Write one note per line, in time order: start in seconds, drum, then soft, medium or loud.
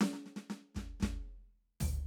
0.00 snare medium
0.00 hi-hat pedal soft
0.13 snare soft
0.26 snare soft
0.36 snare soft
0.50 snare soft
0.75 kick soft
0.75 snare soft
0.77 snare soft
1.00 kick medium
1.00 snare soft
1.02 snare medium
1.80 open hi-hat medium
1.80 kick medium
1.80 floor tom medium